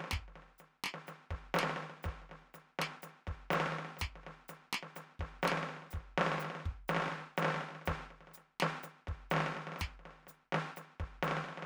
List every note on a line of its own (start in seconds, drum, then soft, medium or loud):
0.01 snare soft
0.04 snare soft
0.08 snare soft
0.08 hi-hat pedal medium
0.11 kick soft
0.11 snare medium
0.14 snare soft
0.18 kick soft
0.28 snare soft
0.36 snare soft
0.42 snare soft
0.48 snare soft
0.58 snare soft
0.58 hi-hat pedal medium
0.84 snare medium
0.86 snare medium
0.94 snare soft
1.07 snare soft
1.07 hi-hat pedal medium
1.31 kick soft
1.31 snare soft
1.54 snare medium
1.54 hi-hat pedal medium
1.56 snare medium
1.59 snare medium
1.63 snare medium
1.70 snare medium
1.76 snare soft
1.83 snare soft
1.90 snare soft
1.97 snare soft
2.03 snare soft
2.03 hi-hat pedal medium
2.04 kick soft
2.04 snare soft
2.09 snare soft
2.14 snare soft
2.22 snare soft
2.29 snare soft
2.31 snare soft
2.37 snare soft
2.42 snare soft
2.47 snare soft
2.54 snare soft
2.54 hi-hat pedal medium
2.79 snare medium
2.82 snare loud
3.02 snare soft
3.02 hi-hat pedal medium
3.09 snare soft
3.27 kick soft
3.27 snare soft
3.51 snare medium
3.51 hi-hat pedal medium
3.53 snare medium
3.56 snare medium
3.60 snare medium
3.66 snare medium
3.71 snare soft
3.75 snare soft
3.79 snare soft
3.85 snare soft
3.89 snare soft
3.91 snare soft
3.97 snare soft
3.97 hi-hat pedal medium
4.01 kick soft
4.01 snare medium
4.16 snare soft
4.23 snare soft
4.27 snare soft
4.41 snare soft
4.44 snare soft
4.48 snare soft
4.48 hi-hat pedal loud
4.73 snare medium
4.74 snare medium
4.83 snare soft
4.96 snare soft
4.96 hi-hat pedal medium
5.11 snare soft
5.19 kick soft
5.19 snare soft
5.43 snare medium
5.43 hi-hat pedal medium
5.45 snare medium
5.48 snare medium
5.52 snare medium
5.57 snare medium
5.63 snare soft
5.69 snare soft
5.74 snare soft
5.77 snare soft
5.82 snare soft
5.91 snare soft
5.91 hi-hat pedal medium
5.93 kick soft
5.93 snare soft
5.96 snare soft
6.01 snare soft
6.18 snare medium
6.21 snare medium
6.27 snare medium
6.32 snare medium
6.34 snare soft
6.38 snare soft
6.38 hi-hat pedal medium
6.43 snare soft
6.45 snare soft
6.50 snare soft
6.55 snare soft
6.66 kick soft
6.66 snare soft
6.71 kick soft
6.88 snare medium
6.88 hi-hat pedal medium
6.95 snare medium
6.97 snare medium
7.00 snare soft
7.02 snare medium
7.06 snare soft
7.08 snare soft
7.12 snare soft
7.20 snare soft
7.37 snare medium
7.37 hi-hat pedal medium
7.43 snare medium
7.45 snare medium
7.48 snare soft
7.51 snare soft
7.54 snare soft
7.56 snare soft
7.61 snare soft
7.69 snare soft
7.71 snare soft
7.75 snare soft
7.81 snare soft
7.85 kick soft
7.85 snare medium
7.85 hi-hat pedal medium
7.99 snare soft
8.11 snare soft
8.21 snare soft
8.27 snare soft
8.32 snare soft
8.32 hi-hat pedal medium
8.38 snare soft
8.60 snare medium
8.63 snare loud
8.83 snare soft
8.83 hi-hat pedal medium
9.07 kick soft
9.07 snare soft
9.30 snare medium
9.30 hi-hat pedal medium
9.34 snare medium
9.37 snare medium
9.41 snare medium
9.46 snare medium
9.52 snare soft
9.55 snare soft
9.57 snare soft
9.62 snare soft
9.72 snare soft
9.76 snare soft
9.76 hi-hat pedal medium
9.81 kick soft
9.81 snare medium
9.99 snare soft
10.05 snare soft
10.11 snare soft
10.16 snare soft
10.20 snare soft
10.23 snare soft
10.27 snare soft
10.27 hi-hat pedal medium
10.53 snare medium
10.54 snare medium
10.67 snare soft
10.76 snare soft
10.76 hi-hat pedal medium
10.85 snare soft
10.92 snare soft
11.00 kick soft
11.00 snare soft
11.23 snare medium
11.23 hi-hat pedal medium
11.28 snare medium
11.31 snare medium
11.37 snare medium
11.44 snare soft
11.49 snare soft
11.53 snare soft
11.58 snare soft
11.63 snare soft